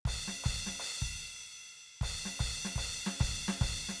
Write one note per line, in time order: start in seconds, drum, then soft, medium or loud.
0.06 kick medium
0.06 crash loud
0.28 snare medium
0.43 kick medium
0.43 crash loud
0.67 snare medium
0.71 snare soft
0.79 crash loud
1.02 kick medium
2.01 kick medium
2.01 crash loud
2.26 snare medium
2.39 kick medium
2.39 crash loud
2.65 snare medium
2.76 kick medium
2.76 crash loud
2.81 kick soft
3.07 snare medium
3.20 kick medium
3.20 crash loud
3.48 snare loud
3.61 kick medium
3.61 crash loud
3.89 snare medium